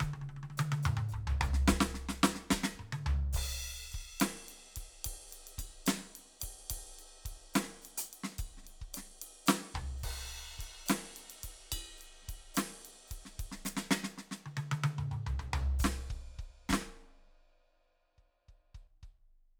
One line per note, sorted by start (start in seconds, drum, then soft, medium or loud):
0.01 kick soft
0.01 hi-hat pedal soft
0.01 high tom loud
0.14 high tom medium
0.22 high tom soft
0.29 high tom soft
0.37 high tom soft
0.43 high tom medium
0.50 high tom medium
0.58 hi-hat pedal medium
0.58 high tom loud
0.72 high tom loud
0.83 hi-hat pedal medium
0.83 mid tom loud
0.97 mid tom medium
1.09 kick soft
1.09 hi-hat pedal soft
1.14 floor tom medium
1.27 floor tom loud
1.41 kick soft
1.41 hi-hat pedal soft
1.41 floor tom loud
1.54 snare medium
1.68 kick soft
1.68 snare loud
1.77 kick soft
1.77 snare loud
1.95 snare soft
2.09 snare medium
2.24 snare loud
2.35 snare soft
2.51 kick soft
2.51 snare loud
2.64 snare loud
2.75 kick soft
2.80 mid tom medium
2.93 high tom loud
3.06 floor tom loud
3.33 kick medium
3.33 hi-hat pedal medium
3.33 crash loud
3.42 kick soft
3.92 kick soft
3.92 ride soft
4.00 kick soft
4.20 snare loud
4.20 hi-hat pedal medium
4.20 ride loud
4.47 hi-hat pedal soft
4.47 ride medium
4.76 kick soft
4.76 ride medium
5.05 kick soft
5.05 ride loud
5.29 hi-hat pedal soft
5.29 ride medium
5.47 ride medium
5.59 kick soft
5.59 snare soft
5.59 ride bell medium
5.64 kick soft
5.86 snare loud
5.86 hi-hat pedal medium
5.86 ride bell loud
5.98 snare soft
6.16 ride medium
6.37 snare soft
6.37 hi-hat pedal soft
6.42 kick soft
6.42 ride loud
6.60 snare soft
6.70 kick soft
6.70 ride loud
6.77 kick soft
6.99 ride soft
7.26 kick soft
7.26 ride medium
7.31 kick soft
7.54 snare loud
7.54 hi-hat pedal medium
7.54 ride medium
7.64 snare soft
7.82 hi-hat pedal soft
7.82 ride medium
7.98 open hi-hat loud
8.13 ride medium
8.24 snare medium
8.32 snare soft
8.39 kick soft
8.39 ride bell medium
8.46 kick soft
8.58 snare soft
8.63 snare soft
8.63 ride soft
8.69 snare soft
8.82 kick soft
8.94 snare soft
8.94 hi-hat pedal medium
8.94 ride loud
9.22 ride medium
9.46 kick soft
9.46 snare loud
9.46 hi-hat pedal medium
9.46 ride loud
9.75 kick soft
9.75 floor tom medium
9.98 hi-hat pedal soft
10.04 kick soft
10.04 crash medium
10.11 kick soft
10.58 kick soft
10.58 snare soft
10.58 ride medium
10.86 snare loud
10.86 hi-hat pedal medium
10.86 ride loud
11.15 snare soft
11.15 hi-hat pedal soft
11.15 ride medium
11.30 ride medium
11.42 kick soft
11.42 hi-hat pedal soft
11.42 ride medium
11.72 kick soft
11.72 ride bell loud
11.78 kick soft
11.98 hi-hat pedal soft
11.98 ride soft
12.22 snare soft
12.29 kick soft
12.29 ride medium
12.55 snare medium
12.55 hi-hat pedal medium
12.55 ride loud
12.69 snare soft
12.85 ride medium
12.94 snare soft
13.08 kick soft
13.08 hi-hat pedal soft
13.08 ride medium
13.26 snare soft
13.39 kick soft
13.39 ride medium
13.46 kick soft
13.52 snare medium
13.65 snare medium
13.65 hi-hat pedal loud
13.77 snare medium
13.91 snare loud
14.04 snare medium
14.18 snare soft
14.32 snare medium
14.46 high tom medium
14.57 high tom loud
14.72 high tom loud
14.84 high tom loud
14.99 mid tom medium
15.12 mid tom medium
15.27 floor tom loud
15.40 floor tom loud
15.54 floor tom loud
15.79 kick medium
15.79 hi-hat pedal medium
15.85 kick soft
15.85 snare medium
16.10 kick soft
16.17 kick soft
16.39 kick soft
16.69 kick soft
16.69 snare loud
16.73 snare loud
16.82 cross-stick medium
18.18 kick soft
18.49 kick soft
18.75 kick soft
19.03 kick soft